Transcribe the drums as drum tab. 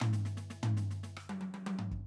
HH |----------x-----|
SD |rgggg-gggr------|
T1 |----------oooo--|
FT |o----o--------o-|
BD |---------------g|